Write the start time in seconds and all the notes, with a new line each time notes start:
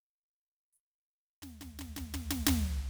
0.73 hi-hat pedal
1.42 snare, floor tom
1.61 snare, floor tom
1.79 snare, floor tom
1.96 snare, floor tom
2.14 snare, floor tom
2.31 snare, floor tom
2.47 snare, floor tom